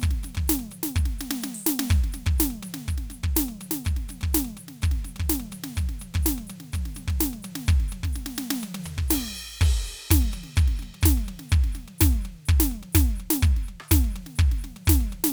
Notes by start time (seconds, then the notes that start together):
0.01 kick, hi-hat pedal, high tom
0.11 snare
0.24 snare, hi-hat pedal, high tom
0.35 kick, high tom
0.48 snare, hi-hat pedal
0.60 high tom
0.71 hi-hat pedal, high tom
0.84 snare
0.96 kick, hi-hat pedal, high tom
1.06 snare
1.19 snare, hi-hat pedal
1.31 snare
1.42 snare, hi-hat pedal
1.55 open hi-hat
1.65 snare, hi-hat pedal
1.80 snare
1.89 kick, hi-hat pedal
1.93 high tom
2.04 snare
2.13 snare, hi-hat pedal, high tom
2.27 kick, high tom
2.39 snare, hi-hat pedal
2.51 high tom
2.63 hi-hat pedal, high tom
2.75 snare
2.88 kick, hi-hat pedal, high tom
2.98 snare
3.11 snare, hi-hat pedal, high tom
3.24 kick, high tom
3.36 snare, hi-hat pedal
3.49 high tom
3.61 hi-hat pedal, high tom
3.71 snare
3.85 kick, hi-hat pedal, high tom
3.97 snare
4.09 snare, hi-hat pedal, high tom
4.21 kick, high tom
4.34 snare, hi-hat pedal
4.45 high tom
4.57 hi-hat pedal, high tom
4.69 snare
4.82 kick, hi-hat pedal, high tom
4.92 snare
5.05 snare, hi-hat pedal, high tom
5.17 kick, high tom
5.29 snare, hi-hat pedal
5.40 high tom
5.52 hi-hat pedal, high tom
5.64 snare
5.76 kick, hi-hat pedal, high tom
5.89 snare
6.00 hi-hat pedal, high tom
6.15 kick, high tom
6.23 snare, hi-hat pedal
6.38 high tom
6.48 hi-hat pedal, high tom
6.61 snare
6.73 kick, hi-hat pedal, high tom
6.86 snare
6.95 snare, hi-hat pedal, high tom
7.08 kick, high tom
7.20 snare, hi-hat pedal
7.34 high tom
7.43 hi-hat pedal, high tom
7.56 snare
7.67 kick, hi-hat pedal, high tom
7.80 snare
7.89 hi-hat pedal, high tom
8.04 kick, snare
8.13 snare, hi-hat pedal
8.27 snare
8.36 snare, hi-hat pedal
8.51 snare
8.60 hi-hat pedal, high tom
8.75 high tom
8.84 floor tom, hi-hat pedal
8.98 kick
9.09 snare, hi-hat pedal, crash
9.36 hi-hat pedal
9.62 kick, hi-hat pedal, crash, ride
9.85 hi-hat pedal
10.11 kick, snare, hi-hat pedal
10.22 high tom
10.32 hi-hat pedal, high tom
10.44 snare
10.56 kick, hi-hat pedal, high tom
10.68 snare
10.77 snare, hi-hat pedal
10.83 high tom
10.95 high tom
11.02 kick, hi-hat pedal
11.06 snare
11.18 high tom
11.24 hi-hat pedal
11.29 high tom
11.40 snare
11.50 kick, hi-hat pedal
11.54 high tom
11.64 snare
11.73 snare, hi-hat pedal
11.77 high tom
11.88 high tom
11.99 kick, snare, hi-hat pedal
12.13 high tom
12.22 hi-hat pedal, high tom
12.40 snare
12.46 kick, hi-hat pedal, high tom
12.61 snare
12.68 hi-hat pedal, high tom
12.83 high tom
12.93 kick, snare, hi-hat pedal
13.16 hi-hat pedal
13.20 high tom
13.31 snare
13.41 kick, hi-hat pedal, high tom
13.57 snare
13.63 hi-hat pedal
13.69 high tom
13.80 cross-stick
13.89 kick, snare, hi-hat pedal
14.05 high tom
14.11 hi-hat pedal
14.16 high tom
14.27 snare
14.36 kick, hi-hat pedal
14.41 high tom
14.52 snare
14.59 hi-hat pedal
14.65 snare, high tom
14.77 high tom
14.86 kick, snare, hi-hat pedal
15.01 high tom
15.09 hi-hat pedal, high tom
15.25 snare